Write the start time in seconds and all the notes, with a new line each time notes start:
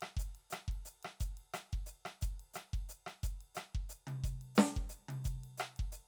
0.01 cross-stick, ride
0.17 kick, hi-hat pedal, ride
0.35 ride
0.50 cross-stick, hi-hat pedal, ride
0.68 kick, ride
0.85 hi-hat pedal, ride
1.03 cross-stick, ride
1.20 kick, hi-hat pedal, ride
1.37 ride
1.54 cross-stick, hi-hat pedal, ride
1.73 kick, ride
1.86 hi-hat pedal, ride
2.05 cross-stick, ride
2.21 kick, hi-hat pedal, ride
2.40 ride
2.54 cross-stick, hi-hat pedal, ride
2.74 kick, ride
2.89 hi-hat pedal, ride
3.07 cross-stick, ride
3.23 kick, hi-hat pedal, ride
3.41 ride
3.55 cross-stick, hi-hat pedal, ride
3.75 kick
3.89 hi-hat pedal, ride
4.07 high tom, ride
4.24 kick, hi-hat pedal, ride
4.41 ride
4.55 snare, hi-hat pedal
4.76 kick, ride
4.89 hi-hat pedal, ride
5.09 high tom, ride
5.24 kick, hi-hat pedal, ride
5.44 ride
5.58 cross-stick, hi-hat pedal, ride
5.76 kick, ride
5.92 hi-hat pedal, ride